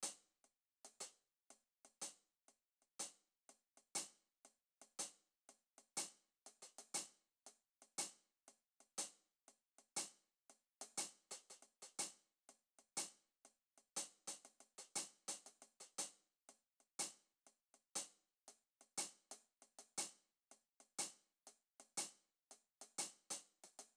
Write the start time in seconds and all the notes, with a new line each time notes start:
0.03 closed hi-hat
0.44 closed hi-hat
0.85 closed hi-hat
1.00 closed hi-hat
1.50 closed hi-hat
1.85 closed hi-hat
2.02 closed hi-hat
2.48 closed hi-hat
2.82 closed hi-hat
2.99 closed hi-hat
3.49 closed hi-hat
3.77 closed hi-hat
3.95 closed hi-hat
4.45 closed hi-hat
4.82 closed hi-hat
4.99 closed hi-hat
5.49 closed hi-hat
5.78 closed hi-hat
5.97 closed hi-hat
6.46 closed hi-hat
6.62 closed hi-hat
6.79 closed hi-hat
6.94 closed hi-hat
7.46 closed hi-hat
7.82 closed hi-hat
7.98 closed hi-hat
8.48 closed hi-hat
8.80 closed hi-hat
8.98 closed hi-hat
9.48 closed hi-hat
9.79 closed hi-hat
9.96 closed hi-hat
10.50 closed hi-hat
10.81 closed hi-hat
10.98 closed hi-hat
11.31 closed hi-hat
11.50 closed hi-hat
11.62 closed hi-hat
11.82 closed hi-hat
11.99 closed hi-hat
12.49 closed hi-hat
12.79 closed hi-hat
12.97 closed hi-hat
13.45 closed hi-hat
13.78 closed hi-hat
13.96 closed hi-hat
14.28 closed hi-hat
14.45 closed hi-hat
14.60 closed hi-hat
14.78 closed hi-hat
14.96 closed hi-hat
15.28 closed hi-hat
15.46 closed hi-hat
15.62 closed hi-hat
15.80 closed hi-hat
15.98 closed hi-hat
16.49 closed hi-hat
16.80 closed hi-hat
16.99 closed hi-hat
17.47 closed hi-hat
17.74 closed hi-hat
17.96 closed hi-hat
18.48 closed hi-hat
18.81 closed hi-hat
18.98 closed hi-hat
19.31 closed hi-hat
19.62 closed hi-hat
19.79 closed hi-hat
19.98 closed hi-hat
20.51 closed hi-hat
20.80 open hi-hat
20.99 closed hi-hat
21.47 closed hi-hat
21.80 closed hi-hat
21.97 closed hi-hat
22.51 closed hi-hat
22.81 closed hi-hat
22.98 closed hi-hat
23.30 closed hi-hat
23.64 open hi-hat
23.79 closed hi-hat